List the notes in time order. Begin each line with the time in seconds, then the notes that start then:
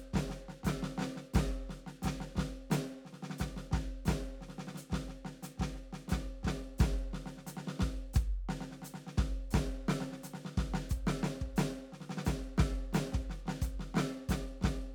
0.14 kick, snare
0.16 snare
0.30 snare
0.49 snare
0.63 kick, snare, hi-hat pedal
0.67 snare
0.83 snare
0.98 snare
1.01 snare
1.16 snare
1.34 kick, snare, hi-hat pedal
1.36 snare
1.70 snare
1.87 snare
2.02 kick, snare, hi-hat pedal
2.06 snare
2.21 snare
2.36 kick, snare
2.38 snare
2.70 snare, hi-hat pedal
3.05 snare
3.13 snare
3.23 snare
3.30 snare
3.38 kick, hi-hat pedal
3.57 snare
3.72 kick, snare
3.74 snare
4.06 kick, snare, hi-hat pedal
4.08 snare
4.41 snare
4.49 snare
4.58 snare
4.67 snare
4.75 snare, hi-hat pedal
4.90 kick, snare
4.93 snare
5.09 snare
5.25 snare
5.43 snare, hi-hat pedal
5.58 kick, snare
5.61 snare
5.75 snare
5.93 snare
6.08 snare, hi-hat pedal
6.12 kick, snare
6.43 kick, snare
6.47 snare
6.79 kick, snare, hi-hat pedal
6.81 snare
7.13 snare
7.26 snare
7.37 snare
7.47 snare, hi-hat pedal
7.57 snare
7.67 snare
7.80 kick, snare
8.14 kick, snare, hi-hat pedal
8.49 snare
8.61 snare
8.72 snare
8.82 snare, hi-hat pedal
8.94 snare
9.07 snare
9.18 kick, snare
9.51 kick, snare, hi-hat pedal
9.88 snare
10.01 snare
10.12 snare
10.24 snare, hi-hat pedal
10.34 snare
10.45 snare
10.58 kick, snare
10.74 snare
10.90 kick, hi-hat pedal
11.07 snare
11.23 snare
11.41 kick
11.56 snare, hi-hat pedal
11.93 snare
12.00 snare
12.10 snare
12.17 snare
12.25 kick, snare, hi-hat pedal
12.58 kick, snare
12.93 snare, hi-hat pedal
12.95 snare
13.13 kick, snare
13.30 snare
13.46 snare
13.48 snare
13.62 kick, snare, hi-hat pedal
13.80 snare
13.95 snare
13.97 snare
14.29 kick, snare, hi-hat pedal
14.61 kick, snare
14.64 snare